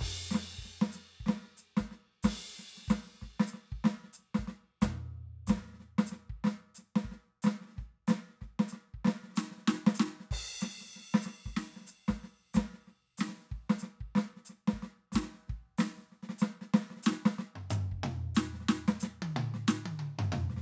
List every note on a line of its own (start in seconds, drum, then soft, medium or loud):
0.01 kick medium
0.01 ride loud
0.31 snare medium
0.31 hi-hat pedal medium
0.35 snare medium
0.54 snare soft
0.59 kick soft
0.66 snare soft
0.82 snare loud
0.93 snare soft
0.93 hi-hat pedal medium
1.21 kick soft
1.27 snare medium
1.29 snare loud
1.44 snare soft
1.58 snare soft
1.58 hi-hat pedal medium
1.78 kick soft
1.78 snare loud
1.92 snare soft
2.24 kick soft
2.24 snare loud
2.24 hi-hat pedal loud
2.24 ride loud
2.60 snare soft
2.78 snare soft
2.83 snare soft
2.86 kick soft
2.86 snare soft
2.89 snare soft
2.89 hi-hat pedal medium
2.91 snare loud
3.07 snare soft
3.15 snare soft
3.22 kick soft
3.22 snare soft
3.41 snare loud
3.48 hi-hat pedal medium
3.54 snare soft
3.73 kick soft
3.85 snare medium
3.85 snare loud
4.05 snare soft
4.14 hi-hat pedal medium
4.19 snare soft
4.35 snare medium
4.40 kick soft
4.48 snare medium
4.82 kick soft
4.82 snare loud
4.82 hi-hat pedal medium
4.82 floor tom loud
5.48 kick soft
5.48 snare medium
5.48 hi-hat pedal loud
5.51 snare loud
5.57 snare soft
5.62 snare soft
5.67 snare soft
5.74 snare soft
5.81 snare soft
5.99 snare loud
6.07 hi-hat pedal medium
6.13 snare soft
6.31 kick soft
6.45 snare medium
6.47 snare medium
6.68 snare soft
6.76 snare soft
6.76 hi-hat pedal medium
6.97 snare loud
7.05 kick soft
7.12 snare soft
7.43 snare medium
7.43 hi-hat pedal medium
7.47 snare loud
7.56 snare soft
7.62 snare soft
7.70 snare soft
7.77 kick soft
7.77 snare soft
8.08 snare medium
8.08 hi-hat pedal medium
8.11 snare loud
8.30 snare soft
8.42 kick soft
8.42 snare soft
8.60 snare loud
8.69 hi-hat pedal medium
8.74 snare soft
8.95 kick soft
9.06 snare medium
9.08 snare loud
9.24 snare soft
9.29 snare soft
9.33 snare soft
9.33 hi-hat pedal loud
9.38 snare loud
9.52 snare soft
9.58 snare soft
9.63 snare soft
9.68 snare soft
9.68 snare loud
9.74 snare soft
9.87 snare loud
9.95 hi-hat pedal loud
10.01 snare loud
10.21 snare soft
10.32 kick medium
10.32 crash loud
10.61 snare medium
10.61 hi-hat pedal loud
10.82 snare soft
10.86 snare soft
10.90 snare soft
10.92 snare soft
10.97 snare soft
11.15 snare loud
11.23 hi-hat pedal medium
11.27 snare medium
11.47 kick soft
11.47 snare soft
11.58 snare medium
11.77 snare soft
11.82 snare soft
11.86 snare soft
11.86 hi-hat pedal medium
11.90 snare soft
12.09 kick soft
12.09 snare medium
12.24 snare soft
12.55 kick soft
12.55 snare medium
12.55 hi-hat pedal loud
12.58 snare loud
12.74 snare soft
12.88 snare soft
13.18 snare soft
13.18 hi-hat pedal loud
13.22 snare loud
13.34 snare soft
13.39 snare soft
13.44 snare soft
13.50 kick soft
13.50 snare soft
13.53 snare soft
13.71 snare loud
13.79 hi-hat pedal medium
13.83 snare soft
14.01 kick soft
14.16 snare medium
14.18 snare medium
14.37 snare soft
14.46 hi-hat pedal medium
14.50 snare soft
14.69 snare loud
14.74 kick soft
14.83 snare medium
15.13 kick soft
15.13 snare soft
15.13 hi-hat pedal medium
15.17 snare loud
15.24 snare soft
15.27 snare soft
15.35 snare soft
15.43 snare soft
15.49 kick soft
15.49 snare soft
15.79 snare loud
15.79 hi-hat pedal medium
15.81 snare loud
15.99 snare soft
16.13 snare soft
16.24 snare soft
16.30 snare medium
16.39 snare loud
16.39 hi-hat pedal medium
16.62 snare soft
16.75 snare loud
16.91 snare soft
16.97 snare soft
17.02 snare soft
17.02 hi-hat pedal loud
17.07 snare loud
17.12 snare medium
17.26 snare loud
17.39 snare medium
17.56 floor tom medium
17.71 floor tom loud
17.71 hi-hat pedal loud
17.92 kick soft
18.04 floor tom loud
18.36 snare loud
18.36 hi-hat pedal loud
18.55 snare soft
18.61 snare soft
18.66 snare soft
18.69 snare loud
18.89 snare loud
19.01 snare medium
19.01 hi-hat pedal loud
19.23 high tom loud
19.37 mid tom loud
19.55 snare soft
19.68 snare loud
19.68 hi-hat pedal loud
19.87 high tom loud
20.00 high tom medium
20.20 floor tom loud
20.33 floor tom loud
20.51 snare soft
20.58 snare soft